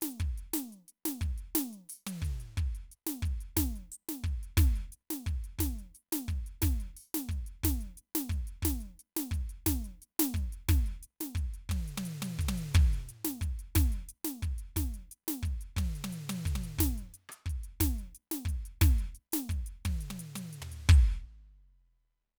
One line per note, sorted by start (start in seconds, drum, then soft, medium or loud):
0.01 snare medium
0.01 closed hi-hat medium
0.10 closed hi-hat medium
0.19 kick medium
0.19 closed hi-hat medium
0.37 closed hi-hat soft
0.53 closed hi-hat medium
0.53 snare medium
0.72 closed hi-hat soft
0.88 closed hi-hat medium
1.05 snare medium
1.05 closed hi-hat medium
1.21 kick medium
1.21 closed hi-hat soft
1.38 closed hi-hat soft
1.55 snare medium
1.55 closed hi-hat medium
1.73 closed hi-hat soft
1.89 hi-hat pedal medium
1.89 open hi-hat medium
2.06 closed hi-hat medium
2.06 high tom medium
2.22 kick medium
2.22 closed hi-hat medium
2.40 closed hi-hat soft
2.57 kick medium
2.57 closed hi-hat medium
2.75 closed hi-hat soft
2.91 closed hi-hat medium
3.06 snare medium
3.06 closed hi-hat medium
3.22 kick medium
3.22 closed hi-hat soft
3.40 closed hi-hat soft
3.56 kick medium
3.56 snare medium
3.56 closed hi-hat medium
3.76 closed hi-hat soft
3.92 closed hi-hat medium
4.09 snare medium
4.09 closed hi-hat soft
4.24 kick medium
4.24 closed hi-hat soft
4.43 closed hi-hat soft
4.57 kick medium
4.57 snare medium
4.57 closed hi-hat medium
4.75 closed hi-hat soft
4.92 closed hi-hat medium
5.10 snare medium
5.10 closed hi-hat soft
5.26 kick medium
5.26 closed hi-hat soft
5.44 closed hi-hat soft
5.59 kick medium
5.59 snare medium
5.59 closed hi-hat medium
5.78 closed hi-hat soft
5.94 hi-hat pedal soft
5.94 open hi-hat medium
6.12 snare medium
6.12 closed hi-hat medium
6.28 kick medium
6.28 closed hi-hat soft
6.46 closed hi-hat soft
6.62 kick medium
6.62 snare medium
6.62 closed hi-hat medium
6.80 closed hi-hat soft
6.96 hi-hat pedal soft
6.96 open hi-hat medium
7.14 snare medium
7.14 closed hi-hat medium
7.29 kick soft
7.29 closed hi-hat soft
7.46 closed hi-hat soft
7.63 kick medium
7.63 snare medium
7.63 closed hi-hat medium
7.81 closed hi-hat soft
7.97 closed hi-hat medium
8.15 snare medium
8.15 closed hi-hat medium
8.29 kick medium
8.29 closed hi-hat soft
8.47 closed hi-hat soft
8.62 kick medium
8.62 snare medium
8.62 closed hi-hat medium
8.80 closed hi-hat soft
8.99 closed hi-hat medium
9.16 snare medium
9.16 closed hi-hat medium
9.31 kick medium
9.31 closed hi-hat medium
9.49 closed hi-hat medium
9.66 kick medium
9.66 snare medium
9.66 closed hi-hat medium
9.84 closed hi-hat soft
10.02 closed hi-hat medium
10.19 snare medium
10.19 closed hi-hat medium
10.34 kick medium
10.34 closed hi-hat medium
10.52 closed hi-hat medium
10.68 kick medium
10.68 snare medium
10.68 closed hi-hat medium
10.86 closed hi-hat soft
11.03 closed hi-hat medium
11.20 snare medium
11.20 closed hi-hat medium
11.35 kick medium
11.35 closed hi-hat medium
11.53 closed hi-hat soft
11.69 kick medium
11.69 closed hi-hat medium
11.69 high tom medium
11.88 closed hi-hat medium
11.97 high tom loud
12.05 closed hi-hat medium
12.22 closed hi-hat medium
12.22 high tom loud
12.39 kick medium
12.39 closed hi-hat medium
12.48 high tom loud
12.57 closed hi-hat medium
12.74 kick loud
12.74 closed hi-hat medium
12.74 high tom medium
12.93 closed hi-hat soft
13.09 closed hi-hat medium
13.24 snare medium
13.24 closed hi-hat medium
13.41 kick medium
13.41 closed hi-hat medium
13.59 closed hi-hat medium
13.75 kick medium
13.75 snare medium
13.75 closed hi-hat medium
13.92 closed hi-hat medium
14.09 closed hi-hat medium
14.24 snare medium
14.24 closed hi-hat medium
14.42 kick medium
14.42 closed hi-hat medium
14.58 closed hi-hat medium
14.76 kick medium
14.76 snare medium
14.76 closed hi-hat medium
14.94 closed hi-hat medium
15.11 closed hi-hat medium
15.28 snare medium
15.28 closed hi-hat medium
15.43 kick medium
15.43 closed hi-hat medium
15.61 closed hi-hat medium
15.76 kick medium
15.76 closed hi-hat medium
15.76 high tom medium
15.95 closed hi-hat soft
16.04 high tom medium
16.12 closed hi-hat medium
16.29 closed hi-hat medium
16.29 high tom loud
16.45 kick medium
16.45 closed hi-hat medium
16.55 high tom medium
16.63 closed hi-hat medium
16.78 kick medium
16.78 snare medium
16.78 closed hi-hat medium
16.97 closed hi-hat medium
17.14 closed hi-hat medium
17.29 cross-stick soft
17.29 closed hi-hat medium
17.46 kick soft
17.46 closed hi-hat medium
17.63 closed hi-hat medium
17.80 kick medium
17.80 snare medium
17.80 closed hi-hat soft
17.98 closed hi-hat soft
18.15 closed hi-hat medium
18.31 snare medium
18.31 closed hi-hat medium
18.45 kick medium
18.45 closed hi-hat medium
18.65 closed hi-hat medium
18.81 kick loud
18.81 snare medium
18.81 closed hi-hat medium
18.98 closed hi-hat soft
19.15 closed hi-hat medium
19.32 snare medium
19.32 closed hi-hat medium
19.49 kick medium
19.49 closed hi-hat medium
19.66 closed hi-hat medium
19.85 kick medium
19.85 closed hi-hat medium
19.85 high tom medium
20.00 closed hi-hat medium
20.10 high tom medium
20.19 closed hi-hat medium
20.35 closed hi-hat medium
20.35 high tom medium
20.53 closed hi-hat medium
20.62 floor tom medium
20.72 closed hi-hat medium
20.89 closed hi-hat medium
20.89 kick loud